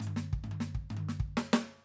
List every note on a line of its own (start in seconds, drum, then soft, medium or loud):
0.03 floor tom medium
0.03 hi-hat pedal medium
0.08 high tom medium
0.16 snare medium
0.33 kick medium
0.43 floor tom medium
0.43 hi-hat pedal soft
0.51 high tom medium
0.60 snare medium
0.75 kick medium
0.89 floor tom medium
0.89 hi-hat pedal soft
0.97 high tom medium
1.09 snare medium
1.20 kick medium
1.37 snare medium
1.53 snare loud